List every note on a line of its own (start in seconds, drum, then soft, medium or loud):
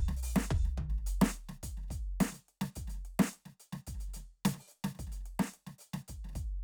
0.09 snare soft
0.17 hi-hat pedal medium
0.24 open hi-hat loud
0.37 snare loud
0.37 hi-hat pedal soft
0.52 kick loud
0.52 kick soft
0.66 snare soft
0.78 kick soft
0.78 floor tom loud
0.85 kick soft
0.91 snare soft
0.99 snare soft
1.07 closed hi-hat medium
1.22 snare loud
1.35 closed hi-hat soft
1.50 snare soft
1.64 closed hi-hat loud
1.64 kick soft
1.78 snare soft
1.84 snare soft
1.89 closed hi-hat medium
1.89 kick soft
1.89 snare soft
2.00 kick soft
2.21 closed hi-hat loud
2.21 snare loud
2.33 closed hi-hat medium
2.33 snare soft
2.49 closed hi-hat soft
2.62 snare medium
2.76 closed hi-hat medium
2.76 kick soft
2.83 kick soft
2.88 closed hi-hat medium
2.88 snare soft
2.95 snare soft
3.06 closed hi-hat soft
3.20 snare loud
3.34 closed hi-hat soft
3.46 snare soft
3.61 closed hi-hat medium
3.73 snare medium
3.88 closed hi-hat medium
3.88 kick soft
3.95 snare soft
4.00 closed hi-hat medium
4.00 snare soft
4.09 snare soft
4.11 closed hi-hat medium
4.11 snare soft
4.17 snare soft
4.46 closed hi-hat loud
4.46 snare loud
4.55 snare soft
4.60 open hi-hat soft
4.69 closed hi-hat soft
4.69 hi-hat pedal medium
4.85 snare medium
4.96 snare soft
4.96 hi-hat pedal soft
5.00 closed hi-hat medium
5.00 kick soft
5.05 kick soft
5.05 snare soft
5.13 closed hi-hat medium
5.13 snare soft
5.17 snare soft
5.21 snare soft
5.27 closed hi-hat soft
5.40 snare medium
5.55 closed hi-hat soft
5.67 snare soft
5.79 closed hi-hat medium
5.79 hi-hat pedal medium
5.94 snare medium
6.09 closed hi-hat medium
6.09 kick soft
6.25 snare soft
6.30 snare soft
6.34 closed hi-hat medium
6.34 kick soft
6.34 snare soft
6.45 kick soft